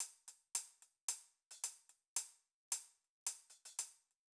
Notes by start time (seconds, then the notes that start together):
0.01 closed hi-hat
0.28 closed hi-hat
0.55 closed hi-hat
0.82 closed hi-hat
1.08 closed hi-hat
1.51 closed hi-hat
1.64 closed hi-hat
1.89 closed hi-hat
2.16 closed hi-hat
2.72 closed hi-hat
3.04 closed hi-hat
3.26 closed hi-hat
3.50 closed hi-hat
3.65 closed hi-hat
3.79 closed hi-hat
4.11 closed hi-hat